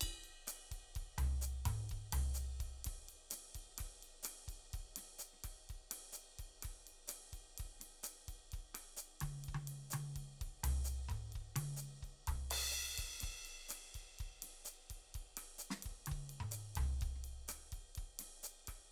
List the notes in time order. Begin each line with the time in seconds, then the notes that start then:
0.01 kick, ride bell
0.08 kick
0.24 ride
0.47 cross-stick, hi-hat pedal, ride
0.71 kick, ride
0.95 kick, ride
1.02 kick
1.18 floor tom, ride
1.42 hi-hat pedal, ride
1.66 kick, mid tom, ride
1.72 kick
1.90 kick, ride
1.97 kick
2.13 floor tom, ride
2.34 hi-hat pedal, ride
2.60 kick, ride
2.66 kick
2.85 kick, snare, ride
2.92 kick
3.09 ride
3.31 snare, hi-hat pedal, ride
3.55 kick, ride
3.78 kick, cross-stick, snare, ride
3.85 kick
4.03 ride
4.23 cross-stick, snare, hi-hat pedal, ride
4.48 kick, ride
4.74 kick, ride
4.79 kick
4.96 snare, ride
5.19 hi-hat pedal, ride
5.33 snare
5.44 kick, cross-stick, snare, ride
5.69 kick, ride
5.75 kick
5.91 cross-stick, snare, ride
6.13 hi-hat pedal, ride
6.39 kick, ride
6.62 kick, cross-stick, snare, ride
6.70 kick
6.87 ride
7.08 cross-stick, snare, hi-hat pedal, ride
7.33 kick, ride
7.58 kick, cross-stick, ride
7.65 kick
7.80 snare, ride
8.03 cross-stick, hi-hat pedal, ride
8.28 kick, ride
8.52 kick, ride
8.59 kick
8.75 cross-stick, ride
8.97 hi-hat pedal, ride
9.21 kick, high tom, ride
9.28 kick
9.44 ride
9.48 kick
9.54 kick, high tom
9.68 ride
9.90 hi-hat pedal, high tom, ride
10.16 kick, ride
10.41 kick, ride
10.47 kick
10.64 floor tom, ride
10.85 hi-hat pedal
10.89 ride
11.09 kick, mid tom, ride
11.17 kick
11.32 kick, ride
11.41 kick
11.56 high tom, ride
11.77 hi-hat pedal, ride
12.03 kick, ride
12.27 kick, floor tom, ride
12.51 ride, crash
12.71 hi-hat pedal
12.98 kick, ride
13.04 kick
13.21 kick, snare, ride
13.29 kick
13.45 ride
13.69 cross-stick, hi-hat pedal, ride
13.95 kick, ride
14.19 kick, ride
14.25 kick
14.42 snare, ride
14.65 hi-hat pedal, ride
14.90 kick, ride
15.14 kick, ride
15.20 kick
15.37 cross-stick, ride
15.58 hi-hat pedal, ride
15.71 snare
15.83 kick, ride
15.91 kick
16.06 high tom, ride
16.12 kick
16.17 kick
16.30 ride
16.40 mid tom
16.51 hi-hat pedal, ride
16.76 kick, floor tom, ride
16.82 kick
17.01 kick, ride
17.08 kick
17.15 snare
17.24 ride
17.48 cross-stick, snare, hi-hat pedal, ride
17.72 kick, ride
17.78 kick
17.95 kick, ride
18.03 kick
18.19 snare, ride
18.43 hi-hat pedal, ride
18.68 kick, cross-stick, ride